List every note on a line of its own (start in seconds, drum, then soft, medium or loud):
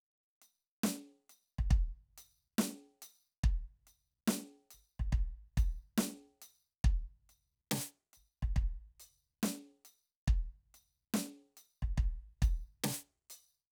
0.42 closed hi-hat soft
0.83 snare loud
1.29 closed hi-hat soft
1.58 kick medium
1.71 kick medium
2.18 closed hi-hat medium
2.58 snare loud
3.02 closed hi-hat medium
3.44 kick medium
3.44 crash soft
3.87 closed hi-hat soft
4.28 snare loud
4.71 kick soft
4.71 closed hi-hat medium
4.99 kick soft
5.12 kick medium
5.17 crash soft
5.57 kick medium
5.57 closed hi-hat medium
5.98 snare loud
6.42 closed hi-hat medium
6.84 kick medium
6.84 crash soft
7.29 closed hi-hat soft
7.71 snare loud
8.13 kick soft
8.13 closed hi-hat soft
8.42 kick medium
8.56 kick medium
8.61 ride soft
9.00 closed hi-hat medium
9.43 snare loud
9.85 closed hi-hat medium
10.28 kick medium
10.28 crash soft
10.74 closed hi-hat soft
11.14 snare loud
11.57 closed hi-hat medium
11.82 kick soft
11.98 kick medium
12.02 crash soft
12.02 ride soft
12.42 kick medium
12.42 closed hi-hat medium
12.84 snare loud
13.30 closed hi-hat medium